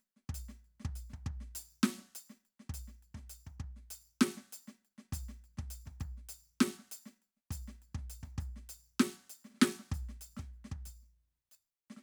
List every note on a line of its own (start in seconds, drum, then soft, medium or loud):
0.01 percussion soft
0.17 snare soft
0.30 kick medium
0.35 percussion medium
0.49 snare soft
0.65 percussion soft
0.81 snare soft
0.86 kick medium
0.96 percussion soft
1.11 kick soft
1.11 snare soft
1.26 kick medium
1.26 percussion soft
1.41 snare soft
1.56 percussion medium
1.84 snare loud
1.99 snare soft
2.03 snare soft
2.16 percussion medium
2.31 snare soft
2.46 percussion soft
2.60 snare soft
2.70 kick medium
2.75 percussion medium
2.89 snare soft
3.03 percussion soft
3.15 kick soft
3.15 snare soft
3.31 percussion medium
3.47 kick soft
3.47 snare soft
3.61 kick medium
3.65 percussion soft
3.77 snare soft
3.91 percussion medium
4.22 snare loud
4.38 snare soft
4.53 percussion medium
4.69 snare soft
4.86 percussion soft
4.99 snare soft
5.13 kick medium
5.13 percussion medium
5.29 snare soft
5.45 percussion soft
5.58 kick medium
5.58 snare soft
5.71 percussion medium
5.87 kick soft
5.87 snare soft
6.01 kick medium
6.01 percussion soft
6.18 snare soft
6.30 percussion medium
6.61 snare loud
6.68 snare soft
6.80 snare soft
6.92 percussion medium
7.07 snare soft
7.23 percussion soft
7.37 snare soft
7.52 kick medium
7.52 percussion medium
7.69 snare soft
7.83 percussion soft
7.96 kick medium
7.96 snare soft
8.11 percussion medium
8.24 kick soft
8.24 snare soft
8.39 kick medium
8.39 percussion soft
8.57 snare soft
8.70 percussion medium
9.01 snare loud
9.30 percussion medium
9.45 snare soft
9.51 snare soft
9.55 snare soft
9.58 snare soft
9.62 snare loud
9.80 snare soft
9.93 kick medium
9.93 percussion soft
10.10 snare soft
10.22 percussion medium
10.38 kick soft
10.38 snare soft
10.55 percussion soft
10.65 snare soft
10.72 kick medium
10.86 kick soft
10.86 percussion medium
11.03 snare soft
11.52 percussion soft
11.91 snare soft
11.97 snare soft